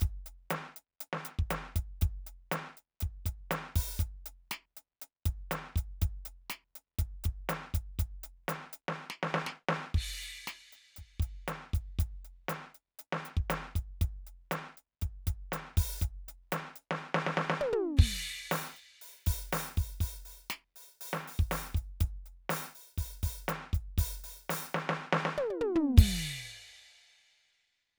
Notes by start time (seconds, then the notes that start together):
0.01 kick, closed hi-hat, hi-hat pedal
0.27 closed hi-hat
0.51 snare, closed hi-hat
0.77 closed hi-hat
1.01 closed hi-hat
1.14 snare
1.26 closed hi-hat
1.39 kick
1.51 snare, closed hi-hat
1.76 kick, closed hi-hat
2.02 kick, closed hi-hat
2.27 closed hi-hat
2.52 snare, closed hi-hat
2.78 closed hi-hat
3.01 kick, closed hi-hat
3.26 kick, closed hi-hat
3.52 snare, closed hi-hat
3.76 kick, open hi-hat
4.00 kick, closed hi-hat, hi-hat pedal
4.26 closed hi-hat
4.52 snare, closed hi-hat
4.77 closed hi-hat
5.02 closed hi-hat
5.26 kick, closed hi-hat
5.52 snare, closed hi-hat
5.76 kick, closed hi-hat
6.02 kick, closed hi-hat
6.26 closed hi-hat
6.51 snare, closed hi-hat
6.76 closed hi-hat
6.99 kick, closed hi-hat
7.25 kick, closed hi-hat
7.50 snare, closed hi-hat
7.75 kick, closed hi-hat
8.00 kick, closed hi-hat
8.24 closed hi-hat
8.49 snare, closed hi-hat
8.74 closed hi-hat
8.89 snare
9.11 snare
9.24 snare
9.35 snare
9.47 snare
9.69 snare
9.95 kick, crash
10.23 open hi-hat
10.48 snare, closed hi-hat
10.73 closed hi-hat
10.97 kick, closed hi-hat
11.20 kick, closed hi-hat
11.48 snare, closed hi-hat
11.74 kick, closed hi-hat
11.99 kick, closed hi-hat
12.25 closed hi-hat
12.49 snare, closed hi-hat
12.75 closed hi-hat
13.00 closed hi-hat
13.13 snare
13.26 closed hi-hat
13.38 kick
13.51 closed hi-hat, snare
13.76 kick, closed hi-hat
14.02 kick, closed hi-hat
14.27 closed hi-hat
14.52 snare, closed hi-hat
14.78 closed hi-hat
15.02 kick, closed hi-hat
15.28 kick, closed hi-hat
15.53 snare, closed hi-hat
15.78 kick, open hi-hat
16.01 kick, closed hi-hat, hi-hat pedal
16.29 closed hi-hat
16.53 snare, open hi-hat
16.76 open hi-hat
16.92 snare
17.15 snare
17.27 snare
17.38 snare
17.51 snare
17.61 high tom
17.73 mid tom
17.98 kick, crash
18.52 snare, open hi-hat
18.77 open hi-hat
19.02 open hi-hat
19.27 kick, open hi-hat
19.53 snare, open hi-hat
19.78 kick, open hi-hat
20.01 kick, open hi-hat
20.26 open hi-hat
20.51 snare, open hi-hat
20.77 open hi-hat
21.02 open hi-hat
21.14 snare
21.28 open hi-hat
21.40 kick
21.52 snare, open hi-hat
21.75 kick, open hi-hat
22.01 open hi-hat, kick
22.26 open hi-hat
22.50 snare, open hi-hat
22.76 open hi-hat
22.98 kick, open hi-hat
23.24 kick, open hi-hat
23.49 snare, open hi-hat
23.74 kick, open hi-hat
23.98 kick, open hi-hat
24.24 open hi-hat
24.50 snare, open hi-hat
24.75 snare
24.90 snare
25.13 snare
25.26 snare
25.38 high tom
25.51 high tom
25.61 mid tom
25.76 floor tom
25.98 kick, ride, crash